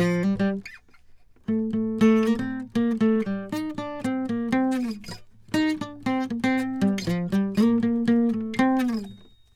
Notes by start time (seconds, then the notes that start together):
0.00 F3
0.25 G3
0.41 G3
1.50 A3
1.75 A3
2.02 A3
2.29 A#3
2.40 C4
2.76 A#3
3.02 A3
3.28 G3
3.54 D#4
3.79 D4
4.06 C4
4.30 A#3
4.50 G3 C4
5.55 D#4
5.83 D4
6.07 C4
6.32 A#3
6.45 C4
6.83 G3
7.08 F3
7.34 G3
7.58 A#3
7.84 A#3
8.09 A#3
8.31 A3
8.60 C4